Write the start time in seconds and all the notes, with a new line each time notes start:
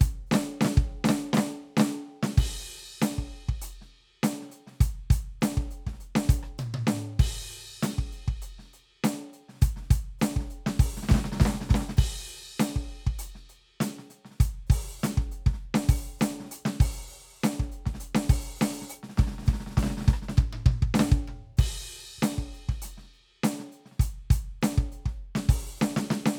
0.01 open hi-hat, kick
0.27 hi-hat pedal
0.32 snare
0.34 snare
0.61 snare
0.65 snare
0.77 kick
1.04 snare
1.09 snare
1.33 snare
1.37 snare
1.77 snare
1.80 snare
2.23 snare
2.35 kick, hi-hat pedal, crash
3.00 closed hi-hat, kick, snare
3.18 kick
3.49 kick
3.62 closed hi-hat
3.81 snare
4.23 closed hi-hat, snare
4.42 snare
4.49 closed hi-hat, snare
4.67 snare
4.71 snare
4.81 closed hi-hat, kick
5.10 closed hi-hat, kick
5.41 closed hi-hat, snare, hi-hat pedal
5.57 kick, snare
5.66 snare
5.71 closed hi-hat
5.87 kick, snare
5.94 snare
5.99 closed hi-hat, snare
6.16 snare
6.29 closed hi-hat, kick
6.43 cross-stick
6.58 hi-hat pedal, high tom
6.74 high tom
6.84 kick, snare, hi-hat pedal
7.20 kick, crash
7.50 closed hi-hat
7.72 kick
7.83 closed hi-hat, snare
7.98 kick
8.12 closed hi-hat
8.28 kick
8.42 closed hi-hat
8.59 snare
8.63 snare
8.73 closed hi-hat
9.04 closed hi-hat, snare
9.33 closed hi-hat
9.49 snare
9.53 snare
9.56 snare
9.61 closed hi-hat, kick, snare
9.76 snare
9.82 snare
9.91 closed hi-hat, kick
10.19 closed hi-hat, snare, hi-hat pedal
10.36 kick, snare
10.45 snare
10.50 closed hi-hat, snare
10.66 snare
10.79 open hi-hat, kick
10.97 snare
11.03 snare
11.09 kick, snare, hi-hat pedal
11.14 snare
11.18 snare
11.24 snare
11.32 snare
11.36 snare
11.40 kick, snare, hi-hat pedal
11.45 snare
11.48 snare
11.54 snare
11.61 snare
11.64 snare
11.69 kick, snare, hi-hat pedal
11.74 snare
11.81 snare
11.89 snare
11.95 kick, hi-hat pedal, crash
11.98 kick
12.27 closed hi-hat
12.60 closed hi-hat, snare
12.76 kick
12.89 closed hi-hat
13.07 kick
13.19 closed hi-hat
13.35 snare
13.49 closed hi-hat
13.80 closed hi-hat, snare
13.99 snare
14.10 closed hi-hat, snare
14.25 snare
14.31 snare
14.39 closed hi-hat, kick, snare
14.67 kick, hi-hat pedal
14.71 open hi-hat
15.03 closed hi-hat, snare, hi-hat pedal
15.18 kick, snare
15.32 closed hi-hat
15.46 kick, snare
15.53 snare
15.74 snare
15.89 open hi-hat, kick
16.19 closed hi-hat, snare, hi-hat pedal
16.40 snare
16.45 snare
16.49 closed hi-hat, snare
16.65 snare
16.80 open hi-hat, kick
17.12 open hi-hat
17.44 open hi-hat, snare, hi-hat pedal
17.60 kick, snare
17.72 closed hi-hat
17.86 kick, snare
17.94 snare
18.00 closed hi-hat
18.15 snare
18.29 open hi-hat, kick
18.61 open hi-hat, snare
18.81 kick, snare
18.89 open hi-hat, hi-hat pedal
19.03 snare
19.09 snare
19.12 snare
19.16 snare, hi-hat pedal
19.18 kick, snare
19.23 cross-stick, snare
19.31 snare
19.38 snare
19.42 snare
19.46 kick, snare, hi-hat pedal
19.48 snare
19.53 snare
19.57 snare
19.60 snare
19.66 snare
19.71 snare
19.74 snare
19.77 kick, snare, hi-hat pedal
19.83 snare
19.86 snare
19.90 snare
19.97 snare
20.01 snare
20.05 snare
20.08 kick, snare, hi-hat pedal
20.14 cross-stick
20.22 snare
20.29 snare
20.37 kick, hi-hat pedal, high tom
20.53 high tom
20.66 kick, high tom
20.82 kick
20.94 snare, hi-hat pedal
21.00 snare
21.12 kick
21.28 mid tom
21.56 kick, hi-hat pedal
21.59 kick, crash
22.18 kick
22.23 closed hi-hat, snare
22.38 kick
22.54 closed hi-hat
22.69 kick, snare
22.82 closed hi-hat, snare
22.97 snare
23.03 snare
23.14 closed hi-hat
23.44 closed hi-hat, snare
23.59 snare
23.68 snare
23.72 closed hi-hat
23.85 snare
23.91 snare
23.97 closed hi-hat, kick, snare
24.30 closed hi-hat, kick
24.62 closed hi-hat, snare, hi-hat pedal
24.78 kick
24.83 snare
24.92 closed hi-hat
25.06 kick, snare
25.21 closed hi-hat
25.35 snare
25.49 open hi-hat, kick
25.80 snare, hi-hat pedal
25.96 snare
26.11 snare
26.26 snare